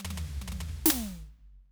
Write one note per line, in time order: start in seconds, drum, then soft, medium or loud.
0.00 closed hi-hat soft
0.00 high tom medium
0.05 floor tom loud
0.10 high tom medium
0.17 floor tom medium
0.27 kick soft
0.37 kick soft
0.41 high tom medium
0.48 floor tom medium
0.52 high tom medium
0.60 floor tom medium
0.68 kick soft
0.76 kick soft
0.86 snare loud
0.90 snare loud